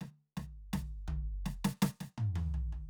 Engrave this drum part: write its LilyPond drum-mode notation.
\new DrumStaff \drummode { \time 4/4 \tempo 4 = 83 <sn tomfh>8 <sn tomfh>8 <sn tomfh>8 tomfh8 sn16 sn16 sn16 sn16 toml16 <tommh hho>16 tomfh16 tomfh16 | }